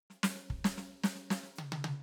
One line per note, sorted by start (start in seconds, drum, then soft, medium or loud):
0.10 snare soft
0.23 snare loud
0.35 snare soft
0.50 kick medium
0.50 snare soft
0.64 snare loud
0.77 snare medium
1.04 snare loud
1.15 snare soft
1.30 snare loud
1.43 snare soft
1.56 hi-hat pedal soft
1.56 high tom loud
1.72 high tom loud
1.84 high tom loud